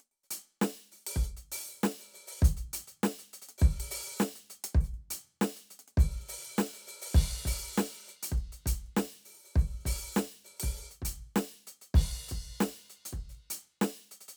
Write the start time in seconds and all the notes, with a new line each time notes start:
0.01 open hi-hat
0.11 open hi-hat
0.23 hi-hat pedal
0.30 closed hi-hat
0.46 closed hi-hat
0.61 snare
0.76 open hi-hat
0.92 open hi-hat
1.06 open hi-hat
1.16 kick
1.22 hi-hat pedal, open hi-hat
1.37 closed hi-hat
1.52 open hi-hat
1.68 open hi-hat
1.83 snare
1.99 open hi-hat
2.14 open hi-hat
2.27 open hi-hat
2.39 kick, hi-hat pedal
2.44 closed hi-hat
2.57 closed hi-hat
2.73 closed hi-hat
2.87 closed hi-hat
3.03 snare
3.19 closed hi-hat
3.33 closed hi-hat
3.42 closed hi-hat
3.49 closed hi-hat
3.58 open hi-hat, kick
3.80 open hi-hat
3.91 open hi-hat
4.05 open hi-hat
4.20 snare, hi-hat pedal
4.35 closed hi-hat
4.50 closed hi-hat
4.64 closed hi-hat
4.75 kick
4.81 hi-hat pedal, open hi-hat
4.94 closed hi-hat
5.10 closed hi-hat
5.27 closed hi-hat
5.41 snare
5.56 closed hi-hat
5.70 closed hi-hat
5.79 closed hi-hat
5.88 closed hi-hat
5.97 open hi-hat, kick
6.29 open hi-hat
6.43 open hi-hat
6.58 snare
6.73 open hi-hat
6.87 open hi-hat
7.02 open hi-hat
7.14 kick, crash
7.29 open hi-hat
7.45 open hi-hat, kick
7.63 open hi-hat
7.78 snare
8.07 open hi-hat, hi-hat pedal
8.23 closed hi-hat
8.32 kick
8.38 closed hi-hat
8.52 closed hi-hat
8.66 closed hi-hat, kick
8.86 closed hi-hat
8.96 snare
9.12 open hi-hat
9.25 open hi-hat
9.34 open hi-hat
9.44 open hi-hat
9.55 open hi-hat, kick
9.85 open hi-hat, kick
10.16 snare, hi-hat pedal
10.44 open hi-hat
10.60 kick, open hi-hat
10.72 kick, open hi-hat
10.90 closed hi-hat
11.02 closed hi-hat, kick
11.21 open hi-hat
11.36 snare
11.67 closed hi-hat
11.81 closed hi-hat
11.94 kick, crash
12.00 hi-hat pedal
12.11 closed hi-hat
12.28 closed hi-hat, kick
12.43 closed hi-hat
12.60 snare
12.89 closed hi-hat
13.05 closed hi-hat
13.13 kick
13.29 hi-hat pedal
13.35 closed hi-hat
13.50 closed hi-hat
13.65 closed hi-hat
13.81 snare
14.11 closed hi-hat
14.21 closed hi-hat
14.28 closed hi-hat